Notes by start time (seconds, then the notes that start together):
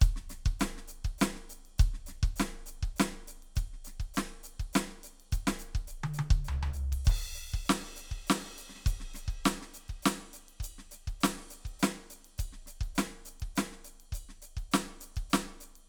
0.01 kick, hi-hat pedal, ride
0.16 snare
0.30 snare, hi-hat pedal, ride
0.46 kick, ride
0.60 snare, hi-hat pedal, ride
0.77 snare
0.88 hi-hat pedal, ride
1.05 kick, ride
1.18 snare, hi-hat pedal, ride
1.35 snare
1.50 hi-hat pedal, ride
1.65 ride
1.78 kick, hi-hat pedal, ride
1.94 snare
2.06 snare, hi-hat pedal, ride
2.23 kick, ride
2.36 snare, hi-hat pedal, ride
2.66 hi-hat pedal, ride
2.83 kick, ride
2.96 snare, hi-hat pedal, ride
3.28 hi-hat pedal, ride
3.43 ride
3.56 kick, hi-hat pedal, ride
3.73 snare
3.85 snare, hi-hat pedal, ride
4.00 kick, ride
4.14 snare, hi-hat pedal, ride
4.44 hi-hat pedal, ride
4.60 kick, ride
4.73 snare, hi-hat pedal, ride
4.89 snare
5.04 hi-hat pedal, ride
5.20 ride
5.32 kick, hi-hat pedal, ride
5.47 snare
5.59 hi-hat pedal, ride
5.75 kick, ride
5.87 hi-hat pedal, ride
6.04 high tom
6.14 hi-hat pedal
6.19 high tom
6.31 kick
6.45 hi-hat pedal
6.49 floor tom
6.63 floor tom
6.74 hi-hat pedal, ride
6.92 kick, ride
7.05 kick, hi-hat pedal
7.09 crash
7.35 hi-hat pedal, ride
7.52 kick, ride
7.65 hi-hat pedal
7.70 snare, crash
7.86 snare
7.96 hi-hat pedal, ride
8.11 kick, ride
8.27 snare, hi-hat pedal, crash
8.47 snare
8.58 hi-hat pedal, ride
8.69 snare
8.75 snare
8.79 snare
8.83 kick, snare, hi-hat pedal
8.87 ride
9.00 snare
9.14 snare, hi-hat pedal, ride
9.28 kick, ride
9.45 snare, hi-hat pedal, ride
9.62 snare
9.74 hi-hat pedal, ride
9.88 kick, ride
10.03 snare, hi-hat pedal, ride bell
10.24 snare
10.33 hi-hat pedal, ride
10.49 ride
10.60 kick, hi-hat pedal
10.64 ride bell
10.78 snare
10.91 snare, hi-hat pedal, ride
11.07 kick, ride
11.21 snare, hi-hat pedal
11.25 ride
11.37 snare
11.50 hi-hat pedal, ride
11.65 kick, ride
11.79 snare, hi-hat pedal, ride bell
11.99 snare
12.10 hi-hat pedal, ride
12.25 ride
12.38 kick, hi-hat pedal, ride bell
12.53 snare
12.66 snare, hi-hat pedal, ride
12.81 kick, ride
12.95 snare, hi-hat pedal, ride bell
13.10 snare
13.25 hi-hat pedal, ride
13.40 kick, ride
13.56 snare, hi-hat pedal, ride bell
13.72 snare
13.85 hi-hat pedal, ride
14.00 ride
14.12 kick, hi-hat pedal, ride bell
14.29 snare
14.42 snare, hi-hat pedal, ride
14.57 kick, ride
14.72 snare, hi-hat pedal, ride bell
15.01 hi-hat pedal, ride
15.16 kick, ride
15.30 snare, hi-hat pedal, ride bell
15.47 snare
15.60 hi-hat pedal, ride
15.76 snare, ride